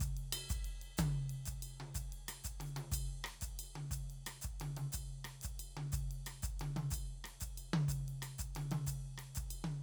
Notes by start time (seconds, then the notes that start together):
0.01 kick, hi-hat pedal, ride
0.17 ride
0.33 cross-stick, ride bell
0.50 kick, hi-hat pedal
0.65 ride
0.82 ride
0.98 kick, hi-hat pedal, high tom, ride bell
1.30 ride
1.46 kick, hi-hat pedal, ride
1.63 ride bell
1.68 hi-hat pedal
1.81 high tom
1.95 kick, hi-hat pedal, ride
2.13 ride
2.29 cross-stick, ride bell
2.45 kick, hi-hat pedal
2.61 high tom, ride
2.66 hi-hat pedal
2.77 high tom, ride
2.92 kick, hi-hat pedal, ride bell
3.25 cross-stick, ride
3.42 kick, hi-hat pedal, ride
3.60 ride bell
3.64 hi-hat pedal
3.76 high tom
3.91 kick, hi-hat pedal, ride
4.11 ride
4.27 cross-stick, ride bell
4.42 kick, hi-hat pedal
4.61 high tom, ride
4.77 high tom, ride
4.93 kick, hi-hat pedal, ride bell
5.25 cross-stick, ride
5.42 kick, hi-hat pedal, ride
5.60 ride bell
5.77 high tom
5.93 kick, hi-hat pedal, ride
6.12 ride
6.27 cross-stick, ride bell
6.43 kick, hi-hat pedal
6.60 high tom, ride
6.77 high tom, ride
6.91 kick, hi-hat pedal, ride bell
7.25 cross-stick, ride
7.41 kick, hi-hat pedal, ride
7.58 ride bell
7.74 high tom
7.89 kick, hi-hat pedal, ride
8.09 ride
8.23 cross-stick, ride bell
8.39 kick, hi-hat pedal
8.56 high tom, ride
8.61 hi-hat pedal
8.72 high tom, ride
8.87 kick, hi-hat pedal, ride
9.18 cross-stick, ride
9.36 kick, hi-hat pedal, ride
9.51 ride bell
9.65 high tom